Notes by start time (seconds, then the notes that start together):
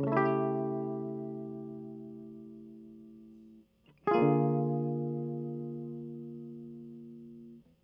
0.00 C#3
0.07 A3
0.12 E4
0.17 G4
4.07 F4 G#4
4.15 A#3
4.23 D3